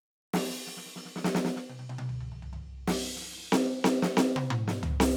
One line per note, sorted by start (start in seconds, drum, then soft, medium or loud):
0.33 snare loud
0.33 crash loud
0.50 snare soft
0.54 hi-hat pedal medium
0.67 snare soft
0.77 snare soft
0.86 snare soft
0.96 snare medium
1.05 snare soft
1.16 snare medium
1.24 snare loud
1.35 snare loud
1.45 snare loud
1.56 snare medium
1.69 high tom medium
1.79 high tom medium
1.89 high tom medium
1.98 high tom loud
2.09 floor tom medium
2.20 floor tom soft
2.32 floor tom soft
2.42 floor tom medium
2.53 floor tom medium
2.87 snare loud
2.87 ride loud
3.05 snare soft
3.16 snare soft
3.21 snare soft
3.25 snare soft
3.37 snare soft
3.40 snare soft
3.43 snare soft
3.47 snare soft
3.52 snare loud
3.64 snare soft
3.70 snare soft
3.74 snare soft
3.78 snare soft
3.81 snare soft
3.84 snare loud
4.02 snare loud
4.17 snare loud
4.36 high tom loud
4.50 mid tom loud
4.68 snare loud
4.83 floor tom loud
5.00 open hi-hat loud
5.00 snare loud